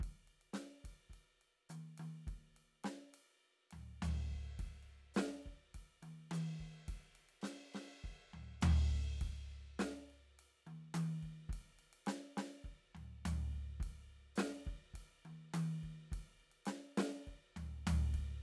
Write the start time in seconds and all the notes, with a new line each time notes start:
0.00 kick, ride
0.28 ride
0.41 ride
0.53 snare, hi-hat pedal, ride
0.84 kick, ride
1.10 kick, ride
1.41 ride
1.69 hi-hat pedal, high tom, ride
1.98 high tom, ride
2.27 kick, ride
2.56 ride
2.84 snare, hi-hat pedal, ride
3.14 ride
3.71 floor tom, ride
4.02 floor tom, hi-hat pedal, ride
4.32 kick
4.59 kick, ride
4.83 ride
5.14 snare, hi-hat pedal, ride
5.43 kick, ride
5.74 kick, ride
6.03 high tom, ride
6.31 hi-hat pedal, high tom, ride
6.60 kick
6.88 kick, ride
7.15 ride
7.29 ride
7.42 snare, hi-hat pedal, ride
7.74 snare, ride
8.04 kick, ride
8.33 floor tom
8.61 floor tom, hi-hat pedal, ride
8.89 kick, ride
9.21 kick, ride
9.46 ride
9.79 snare, hi-hat pedal, ride
10.10 ride
10.39 ride
10.67 high tom, ride
10.94 hi-hat pedal, high tom, ride
11.23 kick, ride
11.49 kick, ride
11.79 ride
11.93 ride
12.06 snare, hi-hat pedal, ride
12.37 snare, ride
12.64 kick, ride
12.95 floor tom, ride
13.25 floor tom, hi-hat pedal, ride
13.52 kick, ride
13.80 kick, ride
14.05 ride
14.36 snare, hi-hat pedal, ride
14.65 kick, ride
14.94 kick, ride
15.25 high tom, ride
15.54 hi-hat pedal, high tom, ride
15.83 kick, ride
16.12 kick, ride
16.40 ride
16.52 ride
16.66 snare, hi-hat pedal, ride
16.97 snare, ride
17.27 kick, ride
17.56 floor tom, ride
17.87 floor tom, hi-hat pedal, ride
18.13 kick, ride